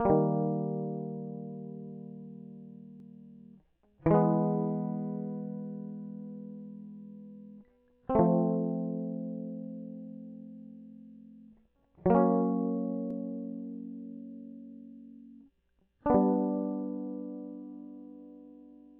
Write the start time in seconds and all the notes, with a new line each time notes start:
0.00 A#3
0.05 G3
0.10 D#3
4.07 E3
4.11 G#3 B3
8.09 C4
8.15 A3
8.20 F3
12.06 F#3 A#3
12.14 C#4
16.06 D4
16.10 B3
16.15 G3